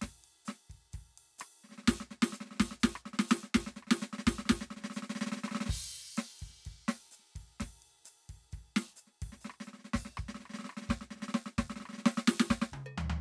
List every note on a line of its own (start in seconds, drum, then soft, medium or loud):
0.01 kick soft
0.01 snare medium
0.01 hi-hat pedal soft
0.01 ride medium
0.08 kick soft
0.24 ride soft
0.45 snare medium
0.45 hi-hat pedal medium
0.45 ride medium
0.70 kick soft
0.70 ride soft
0.75 kick soft
0.92 kick soft
0.92 hi-hat pedal soft
0.92 ride medium
1.18 ride medium
1.38 cross-stick medium
1.38 hi-hat pedal loud
1.38 ride medium
1.60 hi-hat pedal soft
1.64 snare soft
1.69 snare soft
1.71 snare soft
1.78 snare soft
1.84 snare soft
1.84 hi-hat pedal medium
1.88 kick soft
1.88 snare loud
2.00 snare soft
2.11 snare soft
2.22 snare loud
2.32 snare soft
2.32 hi-hat pedal medium
2.40 snare soft
2.45 snare soft
2.51 snare soft
2.51 hi-hat pedal soft
2.55 snare soft
2.60 kick soft
2.60 snare loud
2.71 snare soft
2.80 kick soft
2.80 snare loud
2.80 hi-hat pedal soft
2.89 kick soft
2.95 cross-stick medium
3.06 snare soft
3.13 snare soft
3.19 snare loud
3.28 snare loud
3.28 hi-hat pedal medium
3.43 snare soft
3.54 kick soft
3.54 snare loud
3.66 snare medium
3.74 snare soft
3.74 hi-hat pedal soft
3.83 cross-stick soft
3.87 snare soft
3.91 snare loud
3.99 snare medium
3.99 hi-hat pedal medium
4.13 snare medium
4.19 snare medium
4.27 kick soft
4.27 snare loud
4.35 kick soft
4.35 snare medium
4.45 snare soft
4.45 hi-hat pedal soft
4.49 kick soft
4.49 snare loud
4.61 snare medium
4.70 snare soft
4.76 snare soft
4.84 snare medium
4.90 snare soft
4.90 hi-hat pedal medium
4.96 snare medium
5.02 snare medium
5.10 snare medium
5.15 snare medium
5.15 hi-hat pedal medium
5.21 snare medium
5.26 snare medium
5.32 snare medium
5.37 snare medium
5.41 snare medium
5.41 hi-hat pedal soft
5.48 cross-stick medium
5.48 snare medium
5.55 snare medium
5.60 snare medium
5.66 kick medium
5.66 snare medium
5.66 hi-hat pedal soft
5.66 crash loud
5.82 kick soft
6.17 snare medium
6.17 hi-hat pedal medium
6.17 ride medium
6.38 hi-hat pedal soft
6.38 ride soft
6.42 kick soft
6.49 snare soft
6.65 kick soft
6.65 hi-hat pedal soft
6.65 ride soft
6.72 kick soft
6.88 snare medium
6.88 ride medium
7.11 hi-hat pedal medium
7.11 ride soft
7.19 snare soft
7.35 kick soft
7.35 ride soft
7.41 kick soft
7.60 kick soft
7.60 snare medium
7.60 hi-hat pedal soft
7.60 ride medium
7.67 kick soft
7.82 ride soft
8.05 hi-hat pedal medium
8.05 ride medium
8.29 kick soft
8.29 ride soft
8.34 kick soft
8.51 kick soft
8.51 hi-hat pedal soft
8.51 ride soft
8.58 kick soft
8.76 snare loud
8.76 ride medium
8.96 hi-hat pedal medium
8.96 ride soft
9.07 snare soft
9.22 kick soft
9.22 ride medium
9.28 kick soft
9.32 snare soft
9.41 snare soft
9.41 hi-hat pedal medium
9.50 cross-stick medium
9.54 cross-stick soft
9.60 snare soft
9.60 hi-hat pedal medium
9.67 snare soft
9.73 snare soft
9.78 snare soft
9.84 snare soft
9.94 kick soft
9.94 snare medium
9.94 hi-hat pedal medium
10.03 kick soft
10.03 snare soft
10.17 kick soft
10.17 cross-stick medium
10.28 snare soft
10.35 snare soft
10.40 snare soft
10.45 cross-stick soft
10.50 snare soft
10.54 snare medium
10.59 snare medium
10.63 snare soft
10.64 snare medium
10.69 cross-stick medium
10.73 cross-stick soft
10.77 snare soft
10.82 snare soft
10.86 kick soft
10.86 snare soft
10.90 snare medium
11.00 kick soft
11.00 snare soft
11.11 snare soft
11.16 snare soft
11.20 snare soft
11.22 snare medium
11.28 snare medium
11.34 snare medium
11.46 snare soft
11.58 kick soft
11.58 snare medium
11.64 kick soft
11.70 snare medium
11.76 snare soft
11.80 snare soft
11.85 cross-stick medium
11.85 snare soft
11.93 snare soft
11.98 snare soft
12.03 snare soft
12.06 snare loud
12.17 snare medium
12.27 snare loud
12.40 snare loud
12.50 kick soft
12.50 snare loud
12.50 hi-hat pedal soft
12.62 snare medium
12.72 kick soft
12.72 mid tom medium
12.86 percussion medium
12.98 floor tom loud
12.98 hi-hat pedal soft
13.10 floor tom loud